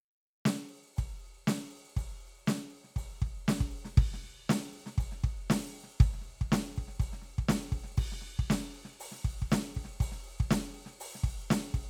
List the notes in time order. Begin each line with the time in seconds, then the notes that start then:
0.45 open hi-hat, snare
0.70 open hi-hat
0.96 open hi-hat, kick
1.47 open hi-hat, snare
1.71 open hi-hat
1.97 open hi-hat, kick
2.22 open hi-hat
2.47 open hi-hat, snare
2.70 open hi-hat
2.84 snare
2.90 snare
2.96 open hi-hat, kick
3.03 snare
3.08 snare
3.12 snare
3.16 snare
3.21 kick, open hi-hat
3.48 open hi-hat, snare
3.60 kick
3.71 open hi-hat
3.84 snare
3.97 kick, crash
4.13 snare
4.21 snare, open hi-hat
4.49 open hi-hat, snare
4.75 open hi-hat
4.86 snare
4.98 open hi-hat, kick
5.11 snare
5.24 open hi-hat, kick
5.50 open hi-hat, snare
5.76 open hi-hat
5.83 snare
6.00 open hi-hat, kick
6.13 snare
6.21 snare
6.27 snare
6.41 kick
6.52 open hi-hat, snare
6.75 open hi-hat, kick
6.87 snare
6.92 snare
7.00 open hi-hat, kick
7.12 snare
7.22 open hi-hat, snare
7.38 kick
7.49 open hi-hat, snare
7.72 kick, open hi-hat
7.83 snare
7.91 snare
7.97 kick, crash
8.12 snare
8.21 snare, open hi-hat
8.39 kick
8.50 open hi-hat, snare
8.74 open hi-hat
8.84 snare
9.00 open hi-hat
9.11 snare
9.24 open hi-hat, kick
9.42 kick
9.51 open hi-hat, snare
9.74 kick, open hi-hat
9.84 snare
10.00 open hi-hat, kick
10.11 snare
10.25 open hi-hat, snare
10.40 kick
10.51 open hi-hat, snare
10.75 open hi-hat
10.85 snare
11.00 open hi-hat
11.14 snare
11.24 open hi-hat, kick
11.50 open hi-hat, snare
11.74 open hi-hat, kick